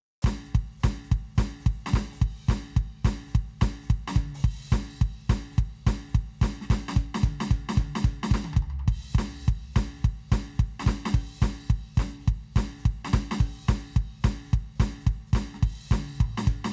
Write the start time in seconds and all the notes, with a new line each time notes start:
0.22 kick, snare, hi-hat pedal
0.26 closed hi-hat
0.46 closed hi-hat
0.54 open hi-hat, kick
0.80 closed hi-hat, snare, hi-hat pedal
0.84 kick
1.04 open hi-hat
1.11 open hi-hat, kick
1.35 closed hi-hat, kick, snare, hi-hat pedal
1.60 open hi-hat
1.66 open hi-hat, kick
1.86 snare, hi-hat pedal
1.93 kick, snare
2.11 open hi-hat
2.21 kick, crash
2.47 closed hi-hat, kick, snare, hi-hat pedal
2.76 open hi-hat, kick
3.03 closed hi-hat, kick, snare, hi-hat pedal
3.26 open hi-hat
3.35 open hi-hat, kick
3.60 closed hi-hat, kick, snare, hi-hat pedal
3.81 open hi-hat
3.87 kick, snare
3.91 open hi-hat
4.08 snare, hi-hat pedal
4.16 kick, high tom
4.34 open hi-hat
4.44 kick, crash
4.71 closed hi-hat, kick, snare, hi-hat pedal
4.93 open hi-hat
5.01 open hi-hat, kick
5.29 closed hi-hat, kick, snare, hi-hat pedal
5.51 open hi-hat
5.58 open hi-hat, kick
5.86 closed hi-hat, kick, snare, hi-hat pedal
6.07 open hi-hat
6.15 open hi-hat, kick
6.41 closed hi-hat, kick, snare, hi-hat pedal
6.61 snare
6.66 kick, hi-hat pedal
6.71 snare
6.88 snare, hi-hat pedal
6.96 kick
7.14 snare
7.20 kick, hi-hat pedal
7.24 high tom
7.40 snare
7.47 kick, hi-hat pedal
7.69 snare
7.73 kick, hi-hat pedal
7.79 high tom
7.95 snare
8.00 kick, hi-hat pedal
8.23 snare, hi-hat pedal
8.31 kick, snare
8.44 high tom
8.50 floor tom, hi-hat pedal
8.56 kick
8.62 floor tom
8.70 floor tom
8.79 kick, floor tom
8.88 kick, crash
9.13 kick, hi-hat pedal
9.18 closed hi-hat, snare
9.39 open hi-hat
9.48 open hi-hat, kick
9.73 kick, snare, hi-hat pedal
9.77 closed hi-hat
9.96 open hi-hat
10.04 open hi-hat, kick
10.29 kick, snare, hi-hat pedal
10.33 closed hi-hat
10.54 open hi-hat
10.59 open hi-hat, kick
10.79 snare, hi-hat pedal
10.86 kick, snare
11.05 snare
11.14 kick, crash
11.38 kick, hi-hat pedal
11.42 closed hi-hat, snare
11.70 open hi-hat, kick
11.95 kick, hi-hat pedal
11.99 closed hi-hat, snare
12.19 open hi-hat
12.28 open hi-hat, kick
12.54 closed hi-hat, kick, snare, hi-hat pedal
12.78 open hi-hat
12.85 open hi-hat, kick
13.05 snare, hi-hat pedal
13.13 kick, snare
13.31 snare
13.40 kick, crash
13.66 closed hi-hat, kick, snare, hi-hat pedal
13.96 open hi-hat, kick
14.21 closed hi-hat, kick, snare, hi-hat pedal
14.44 open hi-hat
14.53 open hi-hat, kick
14.75 hi-hat pedal
14.80 closed hi-hat, kick, snare
15.01 closed hi-hat
15.07 open hi-hat, kick
15.27 hi-hat pedal
15.33 closed hi-hat, kick, snare
15.54 snare
15.63 kick, crash
15.87 hi-hat pedal
15.91 kick, snare, high tom
16.20 kick, mid tom
16.37 snare, hi-hat pedal
16.47 kick
16.64 snare